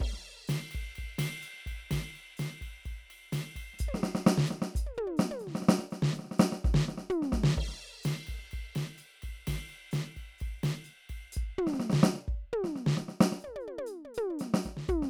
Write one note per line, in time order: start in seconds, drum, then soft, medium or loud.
0.01 kick soft
0.01 crash medium
0.14 snare soft
0.48 snare medium
0.48 hi-hat pedal medium
0.48 ride medium
0.72 kick soft
0.72 ride medium
0.78 kick soft
0.78 snare soft
0.83 snare soft
0.96 kick soft
0.96 hi-hat pedal soft
0.96 ride soft
1.04 kick soft
1.19 snare medium
1.19 ride loud
1.43 hi-hat pedal medium
1.43 ride soft
1.54 snare soft
1.67 kick soft
1.67 ride soft
1.72 kick soft
1.91 kick soft
1.91 snare medium
1.91 hi-hat pedal soft
1.91 ride medium
1.98 kick soft
2.16 ride soft
2.38 snare medium
2.38 hi-hat pedal medium
2.38 ride medium
2.62 kick soft
2.62 ride soft
2.84 kick soft
2.84 hi-hat pedal soft
2.84 ride soft
2.91 kick soft
3.11 ride soft
3.33 snare medium
3.33 hi-hat pedal medium
3.33 ride medium
3.56 kick soft
3.56 ride medium
3.74 snare soft
3.80 kick soft
3.80 hi-hat pedal loud
3.87 kick soft
3.87 high tom medium
3.95 snare medium
4.04 snare medium
4.16 snare medium
4.27 snare loud
4.38 snare loud
4.47 hi-hat pedal medium
4.51 snare medium
4.63 snare medium
4.76 kick soft
4.76 hi-hat pedal loud
4.87 high tom soft
4.95 hi-hat pedal soft
4.95 mid tom loud
5.07 high tom soft
5.18 snare loud
5.18 hi-hat pedal medium
5.31 high tom medium
5.40 snare soft
5.40 hi-hat pedal medium
5.48 snare soft
5.51 snare soft
5.56 snare medium
5.63 snare soft
5.69 snare loud
5.69 hi-hat pedal medium
5.91 snare soft
5.91 hi-hat pedal soft
6.03 snare loud
6.14 snare soft
6.14 hi-hat pedal medium
6.20 snare soft
6.25 snare soft
6.32 snare soft
6.39 snare loud
6.39 hi-hat pedal medium
6.53 snare medium
6.65 kick medium
6.65 snare soft
6.65 hi-hat pedal soft
6.75 kick soft
6.75 snare loud
6.89 snare soft
6.98 snare soft
7.10 hi-hat pedal soft
7.10 floor tom loud
7.23 snare soft
7.30 kick soft
7.30 hi-hat pedal soft
7.39 kick soft
7.44 snare loud
7.55 kick soft
7.55 hi-hat pedal soft
7.55 crash medium
7.64 kick soft
7.69 snare soft
7.75 snare soft
8.04 snare medium
8.04 hi-hat pedal medium
8.04 ride medium
8.27 kick soft
8.27 snare soft
8.27 ride soft
8.34 kick soft
8.34 snare soft
8.39 snare soft
8.44 snare soft
8.51 kick soft
8.51 hi-hat pedal soft
8.51 ride soft
8.59 kick soft
8.76 snare medium
8.76 ride medium
8.99 hi-hat pedal medium
8.99 ride soft
9.23 kick soft
9.23 ride soft
9.29 kick soft
9.47 kick soft
9.47 snare medium
9.47 hi-hat pedal soft
9.47 ride medium
9.54 kick soft
9.70 ride soft
9.92 snare medium
9.92 hi-hat pedal medium
9.92 ride medium
10.17 kick soft
10.17 ride soft
10.39 kick soft
10.39 hi-hat pedal soft
10.39 ride soft
10.48 kick soft
10.64 snare medium
10.64 ride medium
10.85 hi-hat pedal medium
10.85 ride soft
10.91 snare soft
11.10 kick soft
11.10 ride soft
11.33 hi-hat pedal loud
11.37 kick soft
11.44 kick soft
11.58 floor tom loud
11.68 snare medium
11.74 snare soft
11.80 snare medium
11.94 snare loud
12.04 snare loud
12.16 snare soft
12.29 kick soft
12.35 kick soft
12.53 mid tom loud
12.65 snare soft
12.76 snare soft
12.87 snare loud
12.98 snare medium
13.09 snare soft
13.21 snare loud
13.21 hi-hat pedal soft
13.33 snare soft
13.41 hi-hat pedal medium
13.41 high tom medium
13.48 kick soft
13.56 high tom medium
13.61 hi-hat pedal soft
13.68 high tom medium
13.79 high tom medium
13.87 hi-hat pedal medium
14.05 high tom soft
14.15 hi-hat pedal medium
14.15 mid tom loud
14.31 high tom soft
14.40 snare soft
14.40 hi-hat pedal medium
14.55 snare loud
14.64 kick soft
14.64 snare soft
14.64 hi-hat pedal medium
14.78 snare medium
14.89 kick soft
14.89 hi-hat pedal medium
14.89 floor tom loud
15.03 snare soft